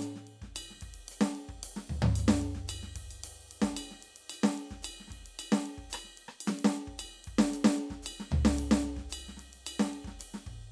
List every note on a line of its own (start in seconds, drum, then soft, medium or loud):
0.01 hi-hat pedal medium
0.01 ride bell medium
0.16 snare soft
0.27 ride soft
0.42 kick soft
0.42 snare soft
0.56 hi-hat pedal medium
0.56 ride bell loud
0.71 snare soft
0.77 snare soft
0.81 kick soft
0.81 snare soft
0.81 ride medium
0.84 snare soft
0.94 ride medium
1.09 hi-hat pedal medium
1.09 ride medium
1.21 snare loud
1.35 ride soft
1.49 kick soft
1.49 cross-stick soft
1.64 hi-hat pedal medium
1.64 ride loud
1.77 snare medium
1.90 floor tom medium
2.02 floor tom loud
2.16 hi-hat pedal medium
2.16 ride bell medium
2.28 snare loud
2.42 ride medium
2.55 kick soft
2.55 snare soft
2.68 hi-hat pedal medium
2.68 ride bell loud
2.83 snare soft
2.96 kick soft
2.96 ride medium
3.11 ride bell medium
3.24 hi-hat pedal medium
3.24 ride loud
3.51 ride medium
3.62 kick soft
3.62 snare medium
3.77 hi-hat pedal medium
3.77 ride bell loud
3.91 snare soft
4.03 ride medium
4.17 ride medium
4.30 hi-hat pedal medium
4.30 ride bell loud
4.44 snare loud
4.58 ride medium
4.71 kick soft
4.71 snare soft
4.83 hi-hat pedal medium
4.83 ride bell loud
5.00 snare soft
5.08 kick soft
5.08 snare soft
5.12 snare soft
5.12 ride medium
5.17 snare soft
5.22 snare soft
5.26 ride medium
5.39 hi-hat pedal medium
5.39 ride bell loud
5.52 snare loud
5.66 ride medium
5.78 kick soft
5.90 hi-hat pedal medium
5.90 ride bell loud
5.95 cross-stick medium
6.04 snare soft
6.18 ride medium
6.29 cross-stick medium
6.41 ride bell medium
6.47 snare medium
6.47 hi-hat pedal medium
6.59 ride medium
6.65 snare loud
6.88 kick soft
6.99 hi-hat pedal medium
6.99 ride bell loud
7.25 kick soft
7.25 ride medium
7.39 snare loud
7.53 hi-hat pedal medium
7.53 ride medium
7.65 snare loud
7.79 ride soft
7.91 kick soft
7.91 snare soft
8.03 hi-hat pedal medium
8.03 ride bell loud
8.20 snare soft
8.31 kick soft
8.31 floor tom loud
8.37 kick soft
8.45 snare loud
8.57 hi-hat pedal medium
8.57 ride medium
8.71 snare loud
8.97 kick soft
8.97 snare soft
9.10 hi-hat pedal medium
9.10 ride bell loud
9.29 snare soft
9.37 snare soft
9.37 ride medium
9.49 snare soft
9.53 snare soft
9.53 ride medium
9.66 hi-hat pedal medium
9.66 ride bell loud
9.80 snare medium
9.87 snare soft
9.94 ride soft
10.05 kick soft
10.05 snare soft
10.10 kick soft
10.20 hi-hat pedal medium
10.20 ride medium
10.34 snare soft
10.47 kick soft
10.47 mid tom medium